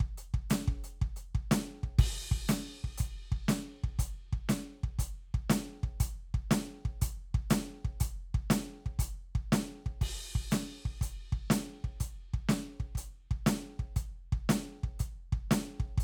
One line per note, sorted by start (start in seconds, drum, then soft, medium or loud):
0.01 kick medium
0.18 closed hi-hat medium
0.35 kick medium
0.51 closed hi-hat loud
0.51 snare loud
0.68 kick medium
0.85 closed hi-hat medium
1.02 kick medium
1.17 closed hi-hat medium
1.36 kick medium
1.52 closed hi-hat loud
1.52 snare loud
1.84 kick medium
1.99 kick loud
1.99 crash loud
2.32 kick medium
2.49 closed hi-hat loud
2.49 snare loud
2.85 kick soft
2.98 closed hi-hat loud
2.98 kick medium
3.32 kick medium
3.49 closed hi-hat loud
3.49 snare loud
3.84 kick medium
4.00 closed hi-hat loud
4.00 kick medium
4.33 kick medium
4.50 closed hi-hat loud
4.50 snare loud
4.84 kick medium
4.99 closed hi-hat loud
4.99 kick medium
5.35 kick medium
5.50 closed hi-hat loud
5.50 snare loud
5.84 kick medium
6.01 closed hi-hat loud
6.01 kick medium
6.35 kick medium
6.51 closed hi-hat loud
6.51 snare loud
6.86 kick medium
7.02 closed hi-hat loud
7.02 kick medium
7.35 kick medium
7.51 closed hi-hat loud
7.51 snare loud
7.85 kick medium
8.01 closed hi-hat loud
8.01 kick medium
8.35 kick medium
8.51 closed hi-hat loud
8.51 snare loud
8.87 kick soft
9.00 closed hi-hat loud
9.00 kick medium
9.36 kick medium
9.53 closed hi-hat loud
9.53 snare loud
9.87 kick medium
10.02 kick medium
10.02 crash medium
10.36 kick medium
10.52 closed hi-hat loud
10.52 snare loud
10.86 kick medium
11.02 closed hi-hat loud
11.02 kick medium
11.33 kick medium
11.51 closed hi-hat loud
11.51 snare loud
11.85 kick medium
12.01 closed hi-hat loud
12.01 kick medium
12.34 kick medium
12.49 closed hi-hat medium
12.49 snare loud
12.81 kick soft
12.96 closed hi-hat loud
12.96 kick soft
13.32 kick medium
13.47 closed hi-hat loud
13.47 snare loud
13.80 kick medium
13.97 closed hi-hat medium
13.97 kick medium
14.33 kick medium
14.50 closed hi-hat loud
14.50 snare loud
14.84 kick medium
15.00 closed hi-hat medium
15.00 kick medium
15.33 kick medium
15.52 closed hi-hat loud
15.52 snare loud
15.81 kick medium
15.98 closed hi-hat medium
15.98 kick medium